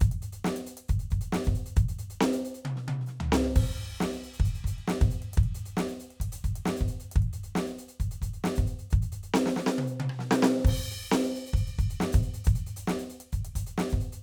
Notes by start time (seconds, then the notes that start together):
0.01 closed hi-hat, kick
0.12 closed hi-hat
0.23 closed hi-hat
0.33 closed hi-hat
0.45 snare
0.57 closed hi-hat
0.67 closed hi-hat
0.78 closed hi-hat
0.89 closed hi-hat, kick
1.00 closed hi-hat
1.11 closed hi-hat, kick
1.21 closed hi-hat
1.33 snare
1.45 closed hi-hat, kick
1.55 closed hi-hat
1.66 closed hi-hat
1.77 closed hi-hat, kick
1.89 closed hi-hat
2.11 closed hi-hat
2.21 snare
2.34 closed hi-hat
2.45 closed hi-hat
2.55 closed hi-hat
2.66 high tom
2.76 snare
2.89 high tom
3.00 snare
3.07 snare, hi-hat pedal
3.21 floor tom
3.27 kick
3.33 snare
3.45 cross-stick
3.56 kick, crash
3.66 closed hi-hat
3.80 closed hi-hat
3.90 closed hi-hat
4.01 snare
4.14 closed hi-hat
4.24 closed hi-hat
4.34 closed hi-hat
4.40 kick
4.45 closed hi-hat
4.65 closed hi-hat, kick
4.79 closed hi-hat
4.88 snare
5.01 closed hi-hat, kick
5.11 closed hi-hat
5.22 closed hi-hat
5.34 kick, closed hi-hat
5.44 closed hi-hat
5.55 closed hi-hat
5.66 closed hi-hat
5.77 snare
5.89 closed hi-hat
6.00 closed hi-hat
6.11 closed hi-hat
6.21 kick, closed hi-hat
6.33 closed hi-hat
6.45 closed hi-hat, kick
6.56 closed hi-hat
6.66 snare
6.77 closed hi-hat
6.81 kick
6.89 closed hi-hat
7.00 closed hi-hat
7.12 closed hi-hat
7.16 kick
7.23 closed hi-hat
7.33 closed hi-hat
7.44 closed hi-hat
7.56 snare
7.67 closed hi-hat
7.79 closed hi-hat
7.89 closed hi-hat
8.00 closed hi-hat, kick
8.12 closed hi-hat
8.22 closed hi-hat, kick
8.34 closed hi-hat
8.44 snare
8.56 closed hi-hat, kick
8.67 closed hi-hat
8.79 closed hi-hat
8.91 closed hi-hat, kick
9.03 closed hi-hat
9.24 closed hi-hat
9.34 snare
9.46 snare
9.57 snare
9.67 snare
9.79 high tom
9.88 closed hi-hat
10.00 high tom
10.10 cross-stick
10.20 snare
10.31 snare
10.43 snare
10.59 snare
10.65 kick, crash
10.80 closed hi-hat
10.91 closed hi-hat
11.03 closed hi-hat
11.12 snare
11.24 closed hi-hat
11.36 closed hi-hat
11.47 closed hi-hat
11.54 kick
11.67 closed hi-hat
11.79 closed hi-hat, kick
11.91 closed hi-hat
12.01 snare
12.13 closed hi-hat, kick
12.23 closed hi-hat
12.34 closed hi-hat
12.45 closed hi-hat, kick
12.56 closed hi-hat
12.67 closed hi-hat
12.77 closed hi-hat
12.88 snare
12.99 closed hi-hat
13.10 closed hi-hat
13.21 closed hi-hat
13.33 closed hi-hat, kick
13.45 closed hi-hat
13.56 closed hi-hat, kick
13.67 closed hi-hat
13.78 snare
13.90 closed hi-hat, kick
14.01 closed hi-hat
14.13 closed hi-hat